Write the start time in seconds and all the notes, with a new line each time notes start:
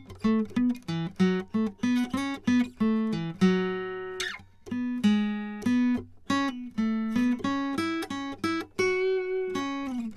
0.25 A3
0.57 B3
0.89 E3
1.21 F#3
1.55 A3
1.84 B3
2.15 C#4
2.48 B3
2.81 A3
3.14 E3
3.42 F#3
4.73 B3
5.05 G#3
5.67 B3
6.31 C#4
6.49 B3
6.79 A3
7.17 B3
7.45 C#4
7.79 E4
8.12 C#4
8.45 E4
8.80 F#4
9.56 C#4